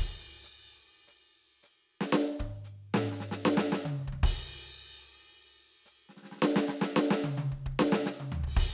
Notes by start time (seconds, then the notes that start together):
0.01 floor tom, hi-hat pedal
0.44 hi-hat pedal
1.08 hi-hat pedal
1.64 hi-hat pedal
2.01 snare
2.13 snare, hi-hat pedal
2.40 kick, mid tom
2.65 hi-hat pedal
2.94 snare, mid tom
3.12 snare
3.17 hi-hat pedal
3.21 snare
3.32 snare
3.46 snare
3.58 snare
3.70 snare, hi-hat pedal
3.86 high tom
3.99 mid tom
4.08 kick
4.13 floor tom
4.24 kick, crash
5.86 hi-hat pedal
6.09 snare
6.17 snare
6.23 snare
6.25 snare
6.32 snare
6.37 snare
6.43 snare
6.56 snare
6.69 snare
6.82 snare
6.97 snare
7.11 snare
7.24 hi-hat pedal, high tom
7.38 high tom
7.52 kick
7.66 kick
7.72 kick
7.80 snare
7.93 snare
8.06 snare
8.20 high tom
8.32 floor tom
8.44 kick, crash
8.57 kick, crash